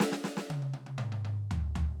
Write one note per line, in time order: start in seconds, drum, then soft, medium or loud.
0.00 snare loud
0.12 snare medium
0.24 snare medium
0.37 snare medium
0.50 high tom loud
0.62 high tom medium
0.74 high tom loud
0.87 high tom medium
0.98 mid tom loud
1.12 mid tom loud
1.25 mid tom loud
1.51 floor tom loud
1.76 floor tom loud